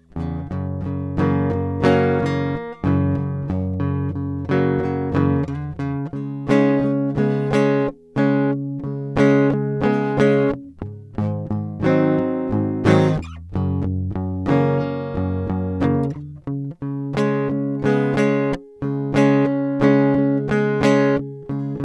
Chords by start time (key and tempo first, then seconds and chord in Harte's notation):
C# major, 90 BPM
0.00 C#:(1,5)
0.51 F#:7
5.85 C#:sus2/5
11.18 G#:7
13.85 F#:7
16.51 C#:(1,5)